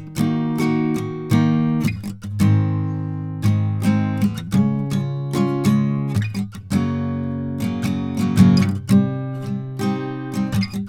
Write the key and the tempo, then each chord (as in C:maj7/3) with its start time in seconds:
A# minor, 110 BPM
0.17 D#:min
2.35 G#:maj
4.53 C#:maj
6.71 F#:maj
8.90 C:min